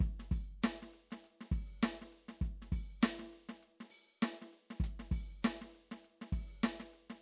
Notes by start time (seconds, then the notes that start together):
0.01 kick, closed hi-hat
0.20 snare
0.32 kick, open hi-hat
0.63 closed hi-hat, snare, hi-hat pedal
0.83 snare
0.94 closed hi-hat
1.11 snare, closed hi-hat
1.25 closed hi-hat
1.41 snare
1.52 kick, open hi-hat
1.82 closed hi-hat, snare, hi-hat pedal
2.02 snare
2.13 closed hi-hat
2.29 snare, closed hi-hat
2.42 kick, closed hi-hat
2.62 snare
2.73 kick, open hi-hat
3.02 closed hi-hat, snare, hi-hat pedal
3.20 snare
3.33 closed hi-hat
3.49 snare, closed hi-hat
3.63 closed hi-hat
3.81 snare
3.91 open hi-hat
4.22 closed hi-hat, snare, hi-hat pedal
4.42 snare
4.53 closed hi-hat
4.71 snare, closed hi-hat
4.80 kick, closed hi-hat
5.00 snare
5.12 kick, open hi-hat
5.43 closed hi-hat, snare, hi-hat pedal
5.62 snare
5.75 closed hi-hat
5.92 snare, closed hi-hat
6.05 closed hi-hat
6.22 snare
6.33 kick, open hi-hat
6.63 closed hi-hat, snare, hi-hat pedal
6.80 snare
6.94 closed hi-hat
7.10 snare, closed hi-hat